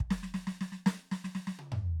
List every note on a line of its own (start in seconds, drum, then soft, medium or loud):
0.00 kick medium
0.11 snare loud
0.23 snare medium
0.34 snare medium
0.47 snare medium
0.61 snare medium
0.72 snare medium
0.86 snare loud
1.12 snare medium
1.24 snare medium
1.35 snare medium
1.47 snare medium
1.59 high tom medium
1.72 mid tom loud